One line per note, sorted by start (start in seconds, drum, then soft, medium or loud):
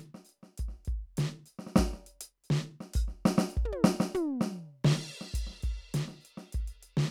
0.01 closed hi-hat soft
0.15 snare soft
0.25 hi-hat pedal medium
0.30 closed hi-hat soft
0.44 snare soft
0.58 closed hi-hat medium
0.58 kick soft
0.69 snare soft
0.74 snare soft
0.86 kick soft
0.86 closed hi-hat soft
1.18 closed hi-hat medium
1.18 snare medium
1.46 hi-hat pedal medium
1.60 snare soft
1.67 snare soft
1.76 kick soft
1.76 snare soft
1.76 snare loud
1.85 kick soft
1.94 snare soft
2.07 closed hi-hat medium
2.21 closed hi-hat loud
2.45 hi-hat pedal medium
2.51 snare loud
2.81 snare soft
2.94 open hi-hat loud
2.94 kick medium
2.94 hi-hat pedal soft
3.03 kick soft
3.06 kick soft
3.06 snare soft
3.26 snare loud
3.39 snare loud
3.50 hi-hat pedal medium
3.58 kick medium
3.64 kick soft
3.64 mid tom medium
3.67 kick soft
3.73 closed hi-hat soft
3.73 high tom medium
3.85 snare loud
4.01 snare medium
4.15 hi-hat pedal medium
4.15 floor tom loud
4.42 snare medium
4.51 hi-hat pedal soft
4.85 snare loud
4.85 crash medium
4.93 snare soft
5.22 snare soft
5.31 kick soft
5.31 hi-hat pedal soft
5.36 closed hi-hat medium
5.47 snare soft
5.51 snare soft
5.63 kick soft
5.63 closed hi-hat soft
5.71 kick soft
5.95 closed hi-hat medium
5.95 snare medium
6.09 snare soft
6.21 hi-hat pedal soft
6.26 closed hi-hat soft
6.38 snare soft
6.53 closed hi-hat medium
6.53 kick soft
6.61 kick soft
6.68 closed hi-hat soft
6.83 closed hi-hat medium
6.98 snare loud
7.06 snare soft